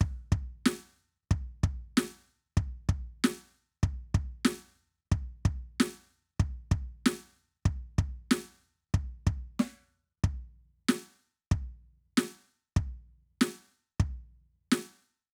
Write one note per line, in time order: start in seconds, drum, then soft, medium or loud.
0.01 kick loud
0.32 kick loud
0.66 snare loud
1.31 kick loud
1.64 kick loud
1.97 snare loud
2.57 kick loud
2.89 kick loud
3.24 snare loud
3.83 kick loud
4.15 kick loud
4.45 snare loud
5.12 kick loud
5.45 kick loud
5.80 snare loud
6.40 kick loud
6.72 kick loud
7.06 snare loud
7.66 kick loud
7.99 kick loud
8.31 snare loud
8.94 kick loud
9.27 kick loud
9.60 snare loud
10.24 kick loud
10.89 snare loud
11.52 kick loud
12.18 snare loud
12.77 kick loud
13.41 snare loud
14.00 kick loud
14.72 snare loud